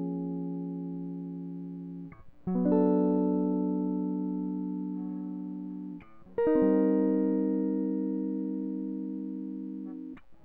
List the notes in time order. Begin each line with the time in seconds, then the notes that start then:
2.48 F#3
2.56 B3
2.66 D4
2.72 A4
6.39 A#4
6.47 D#4
6.56 C4
6.63 G3